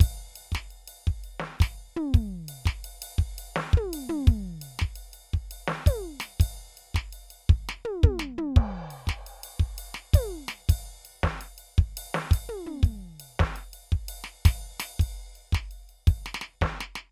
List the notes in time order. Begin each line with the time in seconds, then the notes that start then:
0.01 kick, ride
0.36 ride
0.53 kick, snare, hi-hat pedal
0.71 ride
0.88 ride
1.08 kick
1.24 ride
1.40 snare, ride
1.59 kick, snare, hi-hat pedal, ride
1.96 floor tom
2.15 kick, ride
2.49 ride
2.63 kick, hi-hat pedal
2.68 snare
2.85 ride
3.03 ride
3.19 kick
3.39 ride
3.57 snare
3.72 kick, hi-hat pedal
3.77 mid tom
3.94 ride
4.09 floor tom
4.28 kick, ride
4.62 ride
4.79 kick, snare, hi-hat pedal
4.96 ride
5.14 ride
5.32 kick, ride
5.52 ride
5.68 snare
5.87 kick, high tom, ride
6.21 snare, ride
6.38 kick, hi-hat pedal, ride
6.78 ride
6.95 kick, snare
7.13 ride
7.31 ride
7.49 kick, ride
7.69 snare
7.85 mid tom
8.04 kick, mid tom
8.20 snare
8.38 floor tom
8.57 kick, crash
8.91 ride
9.08 kick, snare, hi-hat pedal
9.27 ride
9.44 ride bell
9.60 kick
9.79 ride
9.95 snare
10.14 kick, high tom, ride
10.49 snare, ride
10.68 kick, hi-hat pedal, ride
11.06 ride
11.24 kick, snare
11.41 ride
11.59 ride
11.76 kick, ride
11.98 ride
12.15 snare
12.32 kick, ride
12.49 mid tom
12.66 floor tom
12.84 kick, ride
13.20 ride
13.39 kick, snare, hi-hat pedal
13.56 ride
13.74 ride bell
13.93 kick
14.09 ride
14.25 snare
14.46 kick, snare, ride
14.80 snare, ride
15.00 kick, hi-hat pedal, ride
15.36 ride
15.53 kick, snare
15.72 ride
15.90 ride
16.07 kick, ride
16.27 snare
16.35 snare
16.42 snare
16.62 kick, snare
16.81 snare
16.96 snare